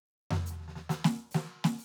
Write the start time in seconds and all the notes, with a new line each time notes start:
0.31 snare, floor tom
0.47 hi-hat pedal
0.51 snare
0.56 snare
0.61 snare
0.68 snare
0.76 snare
0.90 snare, hi-hat pedal
1.05 snare
1.32 snare, hi-hat pedal
1.65 snare
1.79 hi-hat pedal